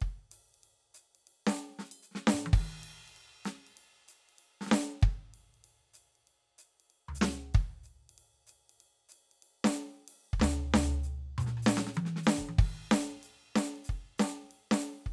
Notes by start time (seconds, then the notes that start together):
0.02 kick, ride
0.32 hi-hat pedal, ride
0.55 ride
0.64 ride
0.95 hi-hat pedal, ride
1.16 ride
1.28 ride
1.48 snare
1.53 hi-hat pedal
1.60 ride
1.80 snare
1.86 hi-hat pedal
1.92 ride bell
2.03 hi-hat pedal
2.12 snare
2.16 snare
2.28 snare, hi-hat pedal
2.34 mid tom
2.47 high tom
2.54 kick, crash
2.84 ride
3.09 ride
3.17 ride
3.46 snare, hi-hat pedal, ride
3.68 ride
3.78 ride
4.09 hi-hat pedal, ride
4.30 ride
4.36 hi-hat pedal, ride
4.62 snare, hi-hat pedal
4.67 snare
4.72 snare
5.03 kick, ride
5.10 hi-hat pedal
5.35 ride
5.55 ride
5.94 hi-hat pedal, ride
6.16 ride
6.28 ride
6.59 hi-hat pedal, ride
6.81 ride
6.91 ride
7.09 floor tom
7.16 hi-hat pedal
7.22 snare
7.55 kick, ride
7.84 hi-hat pedal, ride
8.10 ride
8.19 ride
8.48 hi-hat pedal, ride
8.70 ride
8.81 ride
9.09 hi-hat pedal, ride
9.32 ride
9.43 ride
9.65 snare, hi-hat pedal
9.78 ride
10.09 hi-hat pedal, ride
10.34 kick
10.41 snare, floor tom
10.74 snare, floor tom
11.04 hi-hat pedal
11.39 hi-hat pedal, mid tom
11.47 snare
11.58 cross-stick
11.63 snare, hi-hat pedal
11.78 snare
11.88 snare
11.94 hi-hat pedal, high tom
12.06 snare
12.17 snare
12.24 snare, hi-hat pedal
12.38 kick, mid tom
12.49 high tom
12.59 kick, crash
12.92 snare, ride
13.24 hi-hat pedal, ride
13.56 snare, hi-hat pedal, ride
13.77 ride
13.85 hi-hat pedal
13.89 kick, ride
14.19 snare, hi-hat pedal, ride
14.52 ride
14.72 snare
14.83 ride
15.07 kick